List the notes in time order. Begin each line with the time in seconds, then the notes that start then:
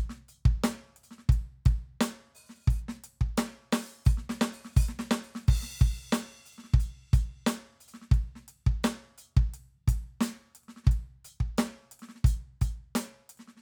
0.10 snare
0.28 closed hi-hat
0.45 kick
0.64 closed hi-hat, snare
0.96 closed hi-hat
1.03 closed hi-hat
1.11 snare
1.18 snare
1.29 kick, snare, closed hi-hat
1.65 kick, snare, closed hi-hat
2.01 closed hi-hat, snare
2.35 open hi-hat
2.49 snare
2.67 kick, open hi-hat
2.78 hi-hat pedal
2.88 snare
3.04 closed hi-hat
3.21 kick
3.37 snare, closed hi-hat
3.72 open hi-hat, snare
4.05 open hi-hat, kick, hi-hat pedal
4.17 snare
4.29 snare
4.41 snare
4.52 open hi-hat
4.65 snare
4.76 open hi-hat, kick
4.84 hi-hat pedal
4.88 snare
4.99 snare
5.11 snare
5.22 open hi-hat
5.35 snare
5.48 kick, crash
5.62 snare
5.79 closed hi-hat, kick
6.12 closed hi-hat, snare
6.46 closed hi-hat
6.52 closed hi-hat
6.58 snare
6.64 snare
6.69 snare
6.74 kick, snare
6.80 closed hi-hat, snare
7.13 closed hi-hat, kick
7.46 closed hi-hat, snare
7.80 closed hi-hat
7.88 closed hi-hat
7.94 snare
8.02 snare
8.11 kick, snare, closed hi-hat
8.36 snare
8.48 closed hi-hat
8.66 kick
8.84 closed hi-hat, snare
9.18 closed hi-hat
9.37 kick
9.54 closed hi-hat
9.88 kick, closed hi-hat
10.21 closed hi-hat, snare
10.55 closed hi-hat
10.63 closed hi-hat
10.68 snare
10.76 snare
10.84 kick, snare
10.91 snare, closed hi-hat
11.25 closed hi-hat
11.40 kick
11.58 closed hi-hat, snare
11.91 closed hi-hat
11.99 snare, closed hi-hat
12.09 snare
12.15 snare
12.24 closed hi-hat, kick
12.61 closed hi-hat, kick
12.95 closed hi-hat, snare
13.29 closed hi-hat
13.37 snare, closed hi-hat
13.48 snare
13.57 snare